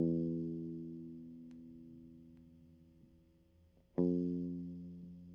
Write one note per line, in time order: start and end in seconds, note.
0.00 3.71 E2
4.00 5.35 F2